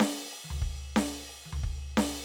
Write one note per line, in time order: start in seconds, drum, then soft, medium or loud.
0.00 snare loud
0.00 crash loud
0.44 high tom soft
0.50 floor tom loud
0.61 kick medium
0.96 snare loud
0.96 crash loud
1.45 high tom soft
1.52 floor tom loud
1.63 kick medium
1.97 snare loud
1.97 crash loud
2.04 cross-stick soft